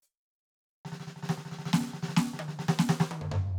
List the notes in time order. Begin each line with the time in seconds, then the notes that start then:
0.00 hi-hat pedal
0.85 snare
0.93 snare
1.00 snare
1.07 snare
1.17 snare
1.23 snare
1.30 snare
1.38 snare
1.46 snare
1.52 snare
1.59 snare
1.66 snare
1.74 snare
1.81 snare
1.88 snare
1.94 snare
2.03 snare
2.09 snare
2.17 snare
2.34 snare
2.40 high tom
2.49 snare
2.60 snare
2.69 snare
2.79 snare
2.90 snare
3.01 snare
3.12 high tom
3.22 floor tom
3.32 floor tom